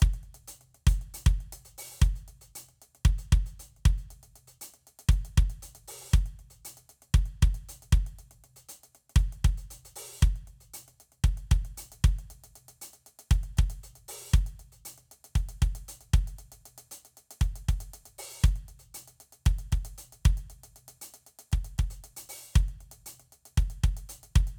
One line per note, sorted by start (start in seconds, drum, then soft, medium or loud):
0.01 kick loud
0.01 closed hi-hat medium
0.14 closed hi-hat soft
0.24 closed hi-hat soft
0.35 closed hi-hat medium
0.48 closed hi-hat loud
0.62 closed hi-hat soft
0.75 closed hi-hat soft
0.88 closed hi-hat medium
0.88 kick loud
1.02 closed hi-hat soft
1.15 closed hi-hat loud
1.27 kick loud
1.27 closed hi-hat soft
1.41 closed hi-hat soft
1.53 closed hi-hat loud
1.66 closed hi-hat medium
1.79 open hi-hat loud
1.92 open hi-hat medium
2.00 kick loud
2.00 hi-hat pedal soft
2.04 closed hi-hat medium
2.16 closed hi-hat soft
2.29 closed hi-hat medium
2.42 closed hi-hat medium
2.56 closed hi-hat loud
2.69 closed hi-hat soft
2.83 closed hi-hat medium
2.96 closed hi-hat soft
3.06 kick loud
3.06 closed hi-hat soft
3.19 closed hi-hat medium
3.33 kick loud
3.33 closed hi-hat soft
3.47 closed hi-hat medium
3.60 closed hi-hat medium
3.77 closed hi-hat soft
3.86 kick loud
3.86 closed hi-hat soft
3.99 closed hi-hat soft
4.11 closed hi-hat medium
4.24 closed hi-hat medium
4.36 closed hi-hat medium
4.48 closed hi-hat medium
4.62 closed hi-hat loud
4.75 closed hi-hat soft
4.88 closed hi-hat medium
5.00 closed hi-hat medium
5.10 kick loud
5.10 closed hi-hat medium
5.26 closed hi-hat medium
5.38 kick loud
5.38 closed hi-hat soft
5.51 closed hi-hat medium
5.63 closed hi-hat loud
5.76 closed hi-hat medium
5.89 open hi-hat loud
6.02 open hi-hat medium
6.12 kick loud
6.12 closed hi-hat medium
6.12 hi-hat pedal soft
6.27 closed hi-hat soft
6.40 closed hi-hat soft
6.51 closed hi-hat medium
6.66 closed hi-hat loud
6.78 closed hi-hat medium
6.90 closed hi-hat medium
7.03 closed hi-hat soft
7.15 kick loud
7.15 closed hi-hat soft
7.26 closed hi-hat soft
7.43 kick loud
7.43 closed hi-hat soft
7.55 closed hi-hat medium
7.70 closed hi-hat loud
7.83 closed hi-hat medium
7.93 kick loud
7.93 closed hi-hat soft
8.07 closed hi-hat soft
8.19 closed hi-hat medium
8.32 closed hi-hat soft
8.45 closed hi-hat soft
8.57 closed hi-hat medium
8.70 closed hi-hat loud
8.84 closed hi-hat medium
8.96 closed hi-hat soft
9.10 closed hi-hat soft
9.17 kick loud
9.17 closed hi-hat soft
9.33 closed hi-hat soft
9.45 kick loud
9.45 closed hi-hat medium
9.58 closed hi-hat medium
9.71 closed hi-hat loud
9.86 open hi-hat medium
9.97 open hi-hat loud
10.13 open hi-hat soft
10.21 kick loud
10.21 closed hi-hat soft
10.21 hi-hat pedal soft
10.37 closed hi-hat soft
10.48 closed hi-hat soft
10.61 closed hi-hat soft
10.74 closed hi-hat loud
10.89 closed hi-hat soft
11.01 closed hi-hat medium
11.13 closed hi-hat soft
11.25 kick loud
11.25 closed hi-hat soft
11.38 closed hi-hat soft
11.52 kick loud
11.52 closed hi-hat medium
11.66 closed hi-hat soft
11.78 closed hi-hat loud
11.93 closed hi-hat medium
12.05 kick loud
12.05 closed hi-hat medium
12.19 closed hi-hat soft
12.31 closed hi-hat medium
12.45 closed hi-hat medium
12.56 closed hi-hat medium
12.69 closed hi-hat medium
12.82 closed hi-hat loud
12.94 closed hi-hat medium
13.07 closed hi-hat medium
13.20 closed hi-hat medium
13.32 kick loud
13.32 closed hi-hat medium
13.44 closed hi-hat soft
13.58 kick loud
13.58 closed hi-hat medium
13.71 closed hi-hat medium
13.84 closed hi-hat medium
13.96 closed hi-hat medium
14.09 open hi-hat loud
14.23 open hi-hat soft
14.32 kick loud
14.32 closed hi-hat medium
14.32 hi-hat pedal soft
14.47 closed hi-hat medium
14.60 closed hi-hat medium
14.73 closed hi-hat medium
14.86 closed hi-hat loud
14.99 closed hi-hat soft
15.12 closed hi-hat medium
15.25 closed hi-hat medium
15.36 kick medium
15.36 closed hi-hat medium
15.50 closed hi-hat medium
15.63 kick loud
15.63 closed hi-hat medium
15.76 closed hi-hat medium
15.89 closed hi-hat loud
16.01 closed hi-hat medium
16.14 kick loud
16.14 closed hi-hat medium
16.28 closed hi-hat medium
16.39 closed hi-hat medium
16.53 closed hi-hat medium
16.66 closed hi-hat medium
16.79 closed hi-hat medium
16.92 closed hi-hat loud
17.06 closed hi-hat medium
17.18 closed hi-hat medium
17.32 closed hi-hat medium
17.42 kick loud
17.42 closed hi-hat medium
17.56 closed hi-hat medium
17.69 kick medium
17.69 closed hi-hat medium
17.81 closed hi-hat medium
17.94 closed hi-hat medium
18.06 closed hi-hat medium
18.19 open hi-hat loud
18.34 open hi-hat soft
18.42 kick loud
18.42 hi-hat pedal soft
18.46 closed hi-hat medium
18.69 closed hi-hat medium
18.80 closed hi-hat medium
18.95 closed hi-hat loud
19.08 closed hi-hat medium
19.21 closed hi-hat medium
19.33 closed hi-hat medium
19.46 kick loud
19.46 closed hi-hat medium
19.59 closed hi-hat medium
19.73 kick medium
19.73 closed hi-hat medium
19.86 closed hi-hat medium
19.99 closed hi-hat loud
20.13 closed hi-hat medium
20.26 kick loud
20.26 closed hi-hat medium
20.38 closed hi-hat medium
20.51 closed hi-hat medium
20.64 closed hi-hat medium
20.77 closed hi-hat medium
20.89 closed hi-hat medium
21.02 closed hi-hat loud
21.15 closed hi-hat medium
21.27 closed hi-hat medium
21.40 closed hi-hat medium
21.53 kick medium
21.53 closed hi-hat medium
21.65 closed hi-hat medium
21.79 kick medium
21.79 closed hi-hat medium
21.91 closed hi-hat medium
22.05 closed hi-hat medium
22.17 closed hi-hat loud
22.30 open hi-hat loud
22.44 open hi-hat soft
22.54 kick loud
22.54 closed hi-hat medium
22.54 hi-hat pedal soft
22.69 closed hi-hat soft
22.81 closed hi-hat soft
22.92 closed hi-hat medium
23.07 closed hi-hat loud
23.20 closed hi-hat soft
23.33 closed hi-hat medium
23.46 closed hi-hat medium
23.58 kick loud
23.58 closed hi-hat medium
23.71 closed hi-hat medium
23.84 kick loud
23.84 closed hi-hat medium
23.98 closed hi-hat medium
24.10 closed hi-hat loud
24.24 closed hi-hat medium
24.36 kick loud
24.36 closed hi-hat medium
24.48 closed hi-hat medium